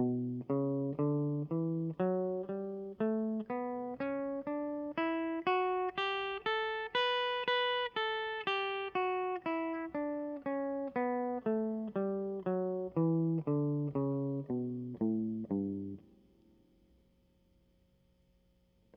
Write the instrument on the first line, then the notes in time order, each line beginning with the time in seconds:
electric guitar
0.03 B2
0.51 C#3
1.00 D3
1.52 E3
2.01 F#3
2.50 G3
3.02 A3
3.51 B3
4.01 C#4
4.48 D4
4.98 E4
5.47 F#4
5.99 G4
6.47 A4
6.96 B4
7.48 B4
7.97 A4
8.48 G4
8.96 F#4
9.47 E4
9.95 D4
10.47 C#4
10.97 B3
11.47 A3
11.97 G3
12.47 F#3
12.98 E3
13.49 D3
13.97 C#3
14.52 B2
15.03 A2
15.53 G2